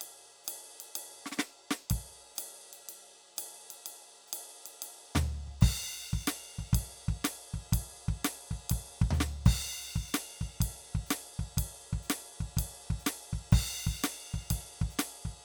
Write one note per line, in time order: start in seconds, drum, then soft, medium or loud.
0.01 ride medium
0.44 hi-hat pedal soft
0.44 ride loud
0.80 ride medium
0.95 ride loud
1.26 snare medium
1.31 snare medium
1.31 hi-hat pedal soft
1.38 snare soft
1.38 snare loud
1.71 snare loud
1.90 kick medium
1.90 ride loud
2.35 hi-hat pedal medium
2.35 ride loud
2.73 ride medium
2.89 ride medium
3.36 hi-hat pedal soft
3.36 ride loud
3.70 ride medium
3.86 ride medium
4.27 hi-hat pedal soft
4.33 ride loud
4.66 ride medium
4.82 ride loud
5.15 snare loud
5.15 floor tom loud
5.47 kick soft
5.60 kick loud
5.60 cross-stick soft
5.60 crash loud
6.13 kick medium
6.20 hi-hat pedal soft
6.27 snare loud
6.27 ride loud
6.58 kick soft
6.73 kick loud
6.73 ride loud
7.08 kick medium
7.24 snare loud
7.24 ride loud
7.54 kick medium
7.72 kick medium
7.72 ride loud
8.08 kick medium
8.24 snare loud
8.24 ride loud
8.51 kick medium
8.70 kick medium
8.70 ride loud
9.01 kick medium
9.11 floor tom loud
9.11 hi-hat pedal medium
9.20 snare loud
9.46 kick loud
9.46 crash loud
9.96 kick medium
10.07 hi-hat pedal medium
10.14 snare loud
10.14 ride loud
10.41 kick medium
10.60 kick medium
10.60 ride loud
10.95 kick medium
11.06 hi-hat pedal soft
11.10 snare loud
11.10 ride loud
11.39 kick medium
11.57 kick medium
11.57 ride loud
11.93 kick medium
12.03 hi-hat pedal soft
12.10 snare loud
12.10 ride loud
12.40 kick medium
12.57 kick medium
12.57 ride loud
12.90 kick medium
12.99 hi-hat pedal soft
13.06 snare loud
13.06 ride loud
13.33 kick medium
13.52 kick loud
13.52 crash loud
13.87 kick medium
13.95 hi-hat pedal soft
14.04 snare loud
14.04 ride loud
14.34 kick medium
14.50 kick medium
14.50 ride loud
14.81 kick medium
14.90 hi-hat pedal soft
14.99 snare loud
14.99 ride loud
15.25 kick medium